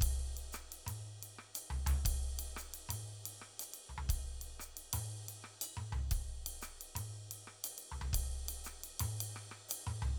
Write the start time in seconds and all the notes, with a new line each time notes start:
0.01 kick, ride
0.37 ride
0.52 cross-stick, hi-hat pedal
0.72 ride
0.87 mid tom, ride
1.23 ride
1.39 cross-stick
1.55 hi-hat pedal, ride
1.70 floor tom
1.86 floor tom, ride
2.05 kick, ride
2.39 ride
2.57 cross-stick, hi-hat pedal
2.74 ride
2.89 mid tom, ride
3.26 ride
3.42 cross-stick
3.60 hi-hat pedal, ride
3.74 ride
3.89 floor tom
3.98 floor tom
4.09 kick, ride
4.41 ride
4.60 cross-stick, hi-hat pedal
4.77 ride
4.93 mid tom, ride
5.29 ride
5.44 cross-stick
5.61 hi-hat pedal, ride bell
5.77 mid tom
5.92 floor tom
6.11 kick, ride
6.46 ride
6.62 cross-stick, hi-hat pedal
6.81 ride
6.95 mid tom, ride
7.31 ride
7.47 cross-stick
7.64 hi-hat pedal, ride
7.78 ride
7.92 floor tom
8.01 floor tom
8.13 kick, ride
8.49 ride
8.64 cross-stick, hi-hat pedal
8.84 ride
9.00 mid tom, ride
9.21 ride
9.36 cross-stick
9.51 cross-stick
9.69 hi-hat pedal, ride
9.87 mid tom
10.02 floor tom